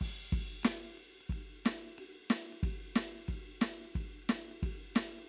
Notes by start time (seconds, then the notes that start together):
0.00 kick, ride
0.32 kick, ride
0.63 snare, ride
0.97 ride
1.21 ride
1.29 kick, ride
1.64 snare, hi-hat pedal, ride
1.88 ride
1.98 ride
2.30 snare, hi-hat pedal, ride
2.52 ride
2.63 kick, ride
2.95 snare, hi-hat pedal, ride
3.18 ride
3.28 kick, ride
3.61 snare, hi-hat pedal, ride
3.85 ride
3.95 kick, ride
4.29 snare, hi-hat pedal, ride
4.51 ride
4.63 kick, ride
4.95 snare, hi-hat pedal, ride
5.18 ride